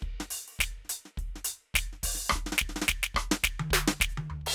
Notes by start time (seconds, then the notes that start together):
0.01 kick, snare, closed hi-hat
0.20 snare
0.30 open hi-hat
0.48 open hi-hat
0.55 kick, hi-hat pedal
0.60 closed hi-hat, snare
0.85 snare
0.89 closed hi-hat
1.05 snare
1.17 kick, closed hi-hat
1.35 snare
1.44 closed hi-hat
1.74 closed hi-hat, kick, snare
1.93 snare
2.03 open hi-hat, kick
2.15 snare
2.29 kick, cross-stick, hi-hat pedal
2.35 snare
2.46 snare
2.52 snare
2.58 kick, snare
2.69 snare
2.76 snare
2.82 snare
2.88 kick, snare
3.03 snare
3.14 kick, cross-stick
3.31 snare
3.43 kick, snare
3.59 high tom
3.70 kick, snare
3.88 snare
4.00 kick, snare
4.09 hi-hat pedal
4.17 high tom
4.30 floor tom
4.41 kick
4.46 crash